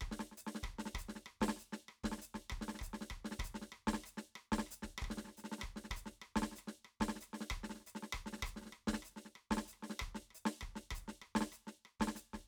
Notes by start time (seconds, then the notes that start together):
0.01 kick, cross-stick
0.12 snare
0.20 snare
0.32 snare
0.38 snare, hi-hat pedal
0.47 snare
0.55 snare
0.63 kick, cross-stick
0.79 snare
0.86 snare
0.95 kick, cross-stick, hi-hat pedal
1.09 snare
1.16 snare
1.26 cross-stick
1.41 kick, snare
1.48 snare
1.57 snare, hi-hat pedal
1.73 snare
1.89 cross-stick
2.04 kick, snare
2.12 snare
2.18 snare, hi-hat pedal
2.35 kick, snare
2.50 kick, cross-stick
2.61 snare
2.68 snare
2.75 snare
2.79 kick, cross-stick, hi-hat pedal
2.93 snare
3.01 snare
3.10 kick, cross-stick
3.25 snare
3.31 snare
3.39 kick, cross-stick
3.44 hi-hat pedal
3.55 snare
3.62 snare
3.72 cross-stick
3.87 kick, snare
3.94 snare
4.04 cross-stick, hi-hat pedal
4.17 snare
4.36 cross-stick
4.52 kick, snare
4.59 snare
4.67 cross-stick
4.71 hi-hat pedal
4.83 kick, snare
4.98 kick, cross-stick
5.04 cross-stick
5.10 snare
5.17 snare
5.25 snare
5.28 snare
5.37 snare, hi-hat pedal
5.44 snare
5.52 snare
5.59 cross-stick, snare
5.63 kick
5.76 snare
5.84 snare
5.91 kick, cross-stick
5.96 hi-hat pedal
6.06 snare
6.22 cross-stick
6.36 kick, snare
6.42 snare
6.51 snare
6.56 cross-stick, hi-hat pedal
6.68 snare
6.85 cross-stick
7.00 kick, snare
7.09 snare
7.16 snare
7.21 cross-stick, hi-hat pedal
7.28 snare
7.33 snare
7.41 snare
7.50 kick, cross-stick
7.64 snare
7.70 snare
7.75 snare
7.80 snare
7.87 cross-stick, hi-hat pedal
7.95 snare
8.03 snare
8.13 kick, cross-stick
8.26 snare
8.33 snare
8.38 snare
8.43 kick, cross-stick, hi-hat pedal
8.56 snare
8.62 snare
8.66 snare
8.73 cross-stick
8.88 kick, snare
8.93 snare
9.02 cross-stick, hi-hat pedal
9.11 snare
9.16 snare
9.25 snare
9.36 cross-stick
9.51 kick, snare
9.57 snare
9.66 snare, hi-hat pedal
9.73 cross-stick
9.80 snare
9.83 snare
10.00 kick, cross-stick
10.15 snare
10.31 cross-stick
10.35 hi-hat pedal
10.46 snare
10.61 kick, cross-stick
10.76 snare
10.91 kick, cross-stick
10.95 hi-hat pedal
11.08 snare
11.22 cross-stick
11.35 kick, snare
11.41 snare
11.52 cross-stick, hi-hat pedal
11.67 snare
11.85 cross-stick
12.00 kick, snare
12.08 snare
12.15 snare, hi-hat pedal
12.34 kick, snare